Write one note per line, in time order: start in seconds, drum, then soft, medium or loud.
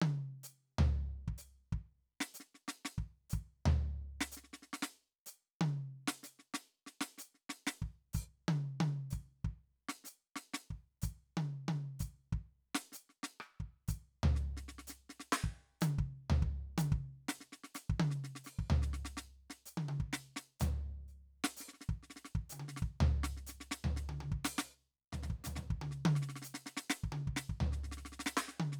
0.01 high tom loud
0.43 hi-hat pedal medium
0.78 floor tom loud
1.28 kick soft
1.38 hi-hat pedal medium
1.72 kick medium
2.20 snare medium
2.34 hi-hat pedal medium
2.40 snare soft
2.54 snare soft
2.68 snare medium
2.85 snare medium
2.98 kick soft
3.30 kick medium
3.30 hi-hat pedal medium
3.65 floor tom loud
4.21 snare medium
4.32 hi-hat pedal medium
4.37 snare soft
4.44 snare soft
4.53 snare soft
4.62 snare soft
4.73 snare medium
4.82 snare medium
5.26 hi-hat pedal medium
5.61 high tom loud
6.08 snare loud
6.23 snare soft
6.23 hi-hat pedal medium
6.39 snare soft
6.54 snare medium
6.86 snare soft
7.01 snare medium
7.18 snare soft
7.18 hi-hat pedal medium
7.34 snare soft
7.49 snare medium
7.67 snare medium
7.82 kick soft
8.13 kick medium
8.13 hi-hat pedal medium
8.48 open hi-hat soft
8.48 high tom loud
8.80 closed hi-hat soft
8.80 high tom loud
9.10 kick soft
9.10 hi-hat pedal medium
9.44 kick soft
9.88 snare medium
10.04 snare soft
10.04 hi-hat pedal medium
10.36 snare medium
10.54 snare medium
10.70 kick soft
11.02 kick soft
11.02 hi-hat pedal medium
11.37 closed hi-hat soft
11.37 high tom medium
11.68 closed hi-hat soft
11.68 high tom medium
11.99 kick soft
11.99 hi-hat pedal medium
12.32 kick medium
12.75 snare loud
12.92 snare soft
12.92 hi-hat pedal medium
13.09 snare soft
13.23 snare medium
13.40 cross-stick medium
13.60 kick soft
13.88 kick medium
13.88 hi-hat pedal medium
14.23 floor tom loud
14.35 snare soft
14.57 snare soft
14.68 snare soft
14.78 snare soft
14.87 snare soft
14.87 hi-hat pedal medium
15.09 snare soft
15.20 snare soft
15.32 snare loud
15.44 kick medium
15.81 hi-hat pedal medium
15.81 high tom loud
15.98 kick medium
16.30 floor tom loud
16.42 kick medium
16.78 hi-hat pedal medium
16.78 high tom loud
16.92 kick medium
17.28 snare loud
17.40 snare soft
17.52 snare soft
17.64 snare soft
17.74 snare medium
17.74 hi-hat pedal medium
17.89 kick medium
18.00 high tom loud
18.11 snare soft
18.24 snare soft
18.35 snare soft
18.44 snare soft
18.44 hi-hat pedal soft
18.59 kick soft
18.70 floor tom loud
18.82 snare soft
18.93 snare soft
19.05 snare medium
19.17 snare medium
19.50 snare soft
19.66 hi-hat pedal medium
19.77 high tom medium
19.88 high tom medium
20.00 kick soft
20.13 snare medium
20.36 snare medium
20.60 floor tom loud
20.60 hi-hat pedal medium
21.08 hi-hat pedal soft
21.44 snare loud
21.57 snare soft
21.57 hi-hat pedal medium
21.68 snare soft
21.73 snare soft
21.81 snare soft
21.89 kick medium
22.03 snare soft
22.10 snare soft
22.16 snare soft
22.25 snare soft
22.35 kick medium
22.49 hi-hat pedal medium
22.49 high tom soft
22.59 high tom medium
22.68 snare soft
22.76 snare soft
22.82 kick medium
23.00 floor tom loud
23.23 snare medium
23.37 snare soft
23.46 snare soft
23.46 hi-hat pedal medium
23.60 snare soft
23.71 snare medium
23.84 floor tom loud
23.96 snare soft
24.09 high tom medium
24.20 high tom medium
24.32 kick soft
24.44 snare loud
24.44 hi-hat pedal medium
24.58 snare loud
25.12 snare soft
25.12 floor tom medium
25.23 snare soft
25.23 floor tom soft
25.30 kick soft
25.44 snare soft
25.44 floor tom medium
25.44 hi-hat pedal medium
25.55 snare soft
25.55 floor tom medium
25.70 kick medium
25.81 high tom medium
25.91 snare soft
26.05 high tom loud
26.15 snare soft
26.22 snare soft
26.29 snare soft
26.36 snare soft
26.42 snare soft
26.42 hi-hat pedal medium
26.54 snare medium
26.66 snare medium
26.77 snare medium
26.90 snare loud
27.03 kick soft
27.12 high tom medium
27.27 kick soft
27.36 snare medium
27.49 kick soft
27.60 floor tom loud
27.72 snare soft
27.83 snare soft
27.91 snare soft
27.97 snare soft
28.05 snare soft
28.12 snare soft
28.19 snare medium
28.26 snare medium
28.37 snare medium
28.48 snare soft
28.60 high tom medium
28.72 snare soft